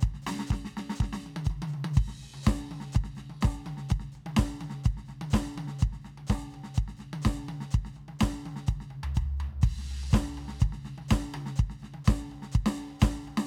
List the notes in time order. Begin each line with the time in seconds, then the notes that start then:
0.01 kick, hi-hat pedal, high tom
0.14 snare
0.22 hi-hat pedal
0.27 snare
0.39 snare
0.47 kick, hi-hat pedal
0.52 snare
0.65 snare
0.70 hi-hat pedal
0.77 snare
0.90 snare
0.95 hi-hat pedal
1.00 kick, snare
1.13 snare
1.26 high tom
1.45 kick, hi-hat pedal
1.50 high tom
1.62 high tom
1.68 hi-hat pedal
1.74 high tom
1.84 high tom
1.94 kick, hi-hat pedal, crash
2.08 snare
2.17 hi-hat pedal
2.23 high tom
2.34 high tom
2.43 kick, snare, hi-hat pedal
2.54 snare
2.60 high tom
2.66 hi-hat pedal
2.71 high tom
2.80 snare
2.92 kick, hi-hat pedal, high tom
3.04 snare
3.15 snare, hi-hat pedal, high tom
3.30 high tom
3.41 kick, snare, hi-hat pedal
3.54 high tom
3.64 hi-hat pedal, high tom
3.77 snare
3.89 kick, hi-hat pedal, high tom
4.00 snare
4.12 hi-hat pedal, high tom
4.26 high tom
4.37 kick, snare, hi-hat pedal
4.49 high tom
4.59 hi-hat pedal, high tom
4.70 snare
4.84 kick, hi-hat pedal, high tom
4.97 snare
5.05 snare, hi-hat pedal, high tom
5.21 high tom
5.30 kick, snare, hi-hat pedal
5.45 high tom
5.52 hi-hat pedal
5.58 high tom
5.68 snare
5.79 kick, hi-hat pedal, high tom
5.93 snare
6.01 snare, hi-hat pedal
6.06 high tom
6.18 high tom
6.27 kick, snare, hi-hat pedal
6.36 cross-stick
6.42 high tom
6.50 hi-hat pedal
6.54 high tom
6.64 snare
6.74 kick, hi-hat pedal, high tom
6.88 snare
6.97 snare, hi-hat pedal, high tom
7.13 high tom
7.22 snare, hi-hat pedal
7.26 kick
7.37 high tom
7.45 hi-hat pedal
7.49 high tom
7.61 snare
7.71 kick, hi-hat pedal, high tom
7.85 snare
7.93 hi-hat pedal, high tom
8.08 high tom
8.19 kick, snare, hi-hat pedal
8.33 high tom
8.42 hi-hat pedal, high tom
8.56 snare
8.67 kick, hi-hat pedal, high tom
8.80 snare
8.90 high tom
9.03 floor tom
9.15 kick, floor tom, hi-hat pedal
9.37 floor tom, hi-hat pedal
9.62 kick, hi-hat pedal, crash
9.79 snare
9.84 hi-hat pedal
9.91 high tom
10.03 high tom
10.10 kick, hi-hat pedal
10.14 snare
10.27 high tom
10.34 hi-hat pedal, high tom
10.48 snare
10.60 kick, hi-hat pedal, high tom
10.73 snare
10.83 snare, hi-hat pedal, high tom
10.98 high tom
11.09 kick, snare, hi-hat pedal
11.22 high tom
11.32 hi-hat pedal, high tom
11.46 snare
11.56 kick, hi-hat pedal, high tom
11.70 snare
11.79 hi-hat pedal, high tom
11.83 snare
11.94 high tom
12.05 kick, snare, hi-hat pedal
12.19 high tom
12.27 hi-hat pedal
12.32 high tom
12.42 snare
12.52 kick, hi-hat pedal, high tom
12.66 snare
12.75 hi-hat pedal, high tom
12.90 high tom
13.00 kick, snare, hi-hat pedal
13.15 high tom
13.23 hi-hat pedal
13.28 high tom
13.38 snare